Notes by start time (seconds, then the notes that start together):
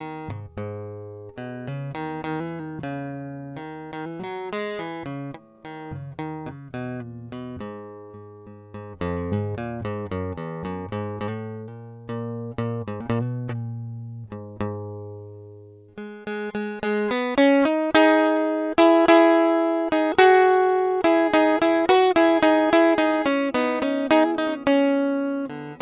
0.01 D#3
0.31 G#2
0.58 G#2
1.38 B2
1.68 C#3
1.96 D#3
2.25 D#3
2.42 E3
2.60 D#3
2.84 C#3
3.57 D#3
3.94 D#3
4.08 E3
4.21 F#3
4.53 G#3
4.80 E3
5.07 C#3
5.66 D#3
5.93 C#3
6.20 D#3
6.47 C#3
6.75 B2
7.01 A#2
7.33 B2
7.62 G#2
8.15 G#2
8.48 G#2
8.75 G#2
9.02 F2
9.34 G#2
9.59 A#2
9.86 G#2
10.12 F#2
10.38 E2
10.66 F#2
10.93 G#2
11.22 A2
11.69 A#2
12.10 A#2
12.59 A#2
12.88 G#2
13.10 B2
13.50 A#2
14.33 G#2
14.61 G#2
15.99 G#3
16.28 G#3
16.56 G#3
16.84 G#3
17.12 B3
17.39 C#4
17.66 D#4
17.95 D#4 G#4
18.79 E4 G#4
19.09 E4 G#4
19.93 D#4 G#4
20.19 F#4 G#4
21.05 E4 G#4
21.34 D#4 G#4
21.62 E4 G#4
21.90 F#4 B4
22.17 E4 G#4
22.43 D#4 G#4
22.74 E4 G#4
22.99 D#4
23.26 C#4
23.55 B3 D#4
23.83 C#4
24.08 B3 D#4
24.12 G#4
24.39 D#4
24.48 C#4
24.68 C#4 D#4
25.47 D3 B3